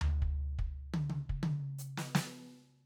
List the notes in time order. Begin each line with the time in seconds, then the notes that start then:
0.01 floor tom
0.22 kick
0.59 kick
0.94 high tom
1.10 high tom
1.29 kick
1.43 high tom
1.79 hi-hat pedal
1.97 snare
2.15 snare